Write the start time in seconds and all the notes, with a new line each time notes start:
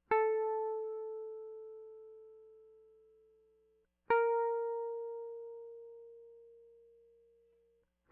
0.12 A4
4.11 A#4